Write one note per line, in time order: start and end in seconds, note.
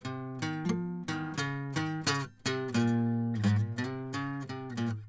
0.06 0.47 C3
0.43 0.66 D#3
0.67 1.07 F3
1.09 1.37 E2
1.09 1.46 D#3
1.39 1.86 C#3
1.77 2.06 D#3
2.08 2.30 C#3
2.46 2.73 C3
2.76 3.37 A#2
3.37 3.56 G#2
3.58 3.79 A#2
3.80 4.15 C3
4.15 4.48 C#3
4.51 4.67 C3
4.51 4.76 C3
4.79 4.97 A#2